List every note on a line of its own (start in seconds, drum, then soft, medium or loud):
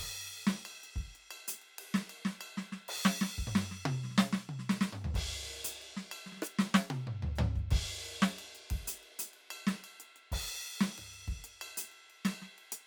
0.11 closed hi-hat soft
0.27 ride medium
0.47 snare loud
0.65 ride bell loud
0.83 closed hi-hat medium
0.96 kick medium
0.96 ride soft
1.15 closed hi-hat soft
1.31 ride bell loud
1.48 closed hi-hat loud
1.62 ride soft
1.78 ride loud
1.94 snare loud
2.09 ride bell medium
2.25 snare loud
2.41 ride bell loud
2.57 snare medium
2.72 snare medium
2.88 crash loud
3.05 snare loud
3.21 snare loud
3.38 kick medium
3.47 mid tom medium
3.55 snare loud
3.71 snare medium
3.85 high tom loud
4.04 snare soft
4.10 snare soft
4.15 snare soft
4.18 snare loud
4.33 snare loud
4.49 high tom medium
4.59 snare soft
4.69 snare loud
4.81 snare loud
4.93 mid tom medium
5.04 floor tom medium
5.14 kick medium
5.14 ride loud
5.35 closed hi-hat soft
5.50 ride soft
5.64 closed hi-hat loud
5.82 ride bell soft
5.97 snare medium
6.11 ride bell loud
6.26 snare soft
6.32 snare soft
6.37 snare soft
6.42 cross-stick medium
6.42 hi-hat pedal loud
6.59 snare loud
6.74 snare loud
6.90 high tom loud
7.07 mid tom medium
7.22 floor tom loud
7.35 hi-hat pedal soft
7.35 floor tom loud
7.55 kick soft
7.55 hi-hat pedal soft
7.71 kick medium
7.71 ride loud
7.88 closed hi-hat soft
7.94 closed hi-hat soft
8.05 ride medium
8.22 snare loud
8.38 ride bell medium
8.55 closed hi-hat medium
8.70 kick medium
8.70 ride loud
8.87 closed hi-hat loud
9.03 ride soft
9.19 closed hi-hat loud
9.33 ride medium
9.50 ride bell loud
9.67 snare loud
9.84 ride bell medium
10.00 closed hi-hat medium
10.16 closed hi-hat soft
10.32 kick medium
10.32 crash loud
10.48 closed hi-hat medium
10.62 ride soft
10.81 snare loud
10.98 cross-stick soft
10.98 ride medium
10.98 floor tom soft
11.13 closed hi-hat soft
11.28 kick medium
11.28 ride soft
11.44 closed hi-hat medium
11.61 ride bell loud
11.77 closed hi-hat loud
11.92 ride soft
12.10 ride soft
12.25 snare loud
12.25 ride bell loud
12.42 snare soft
12.58 ride soft
12.72 closed hi-hat loud